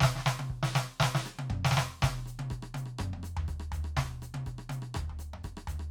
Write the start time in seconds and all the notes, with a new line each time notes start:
0.01 kick, snare, hi-hat pedal
0.04 snare
0.16 snare
0.19 snare
0.27 kick, snare, hi-hat pedal
0.40 high tom
0.50 kick
0.63 snare
0.75 snare, hi-hat pedal
1.01 kick, snare
1.03 snare
1.15 snare
1.24 kick, cross-stick, hi-hat pedal
1.39 high tom
1.50 kick, mid tom
1.65 snare
1.72 snare
1.76 kick, snare, hi-hat pedal
2.02 kick, snare, hi-hat pedal, high tom
2.19 high tom
2.26 cross-stick, hi-hat pedal
2.40 high tom
2.51 kick, cross-stick, hi-hat pedal
2.63 cross-stick
2.75 hi-hat pedal, high tom
2.86 cross-stick
2.99 kick, cross-stick, hi-hat pedal, mid tom
3.14 mid tom
3.24 cross-stick, hi-hat pedal
3.37 floor tom
3.49 kick, cross-stick, hi-hat pedal
3.60 cross-stick
3.72 floor tom, hi-hat pedal
3.85 cross-stick
3.97 kick, snare, hi-hat pedal, high tom
4.11 high tom
4.23 cross-stick, hi-hat pedal
4.35 high tom
4.47 kick, cross-stick, hi-hat pedal
4.59 cross-stick
4.70 hi-hat pedal, high tom
4.83 cross-stick
4.95 kick, cross-stick, floor tom, hi-hat pedal
5.10 floor tom
5.19 cross-stick, hi-hat pedal
5.34 mid tom
5.44 kick, cross-stick, hi-hat pedal
5.57 cross-stick
5.68 floor tom, hi-hat pedal
5.80 cross-stick